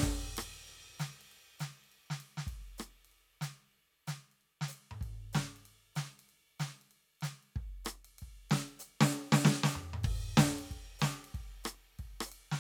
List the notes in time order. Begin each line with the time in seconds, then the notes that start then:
0.03 kick, crash
0.38 cross-stick, ride
0.70 ride
1.00 snare, hi-hat pedal, ride
1.22 ride
1.32 ride
1.60 snare, hi-hat pedal
1.85 ride
1.92 ride
2.11 snare
2.21 ride
2.38 snare
2.47 kick, ride
2.79 cross-stick, hi-hat pedal
3.05 ride
3.12 ride
3.42 snare, hi-hat pedal, ride
4.08 snare, hi-hat pedal, ride
4.32 ride
4.42 ride
4.62 snare
4.69 hi-hat pedal
4.74 ride
4.92 high tom
5.02 kick, ride
5.34 snare, hi-hat pedal, ride
5.57 ride
5.66 ride
5.96 snare, hi-hat pedal, ride
6.20 ride
6.30 ride
6.60 snare, hi-hat pedal, ride
6.82 ride
6.92 ride
7.22 snare, hi-hat pedal, ride
7.43 ride
7.56 kick
7.85 cross-stick, hi-hat pedal
8.05 ride
8.19 kick, ride
8.51 snare, ride
8.55 hi-hat pedal
8.69 ride
8.80 hi-hat pedal, ride
9.01 snare
9.06 hi-hat pedal
9.13 ride
9.33 snare
9.38 hi-hat pedal
9.45 snare
9.64 snare
9.69 hi-hat pedal
9.76 mid tom
9.94 high tom
10.04 kick, crash
10.28 kick
10.38 snare, ride
10.59 ride
10.71 kick, ride
11.00 snare, hi-hat pedal, ride
11.25 ride
11.35 kick, ride
11.65 cross-stick, hi-hat pedal
11.99 kick, ride
12.14 kick
12.21 cross-stick
12.26 hi-hat pedal
12.32 ride
12.52 snare